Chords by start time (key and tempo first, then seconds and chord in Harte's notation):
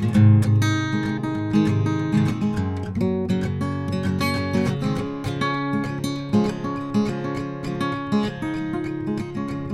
C# major, 100 BPM
0.13 G#:maj
2.53 F#:maj
4.93 C#:maj/3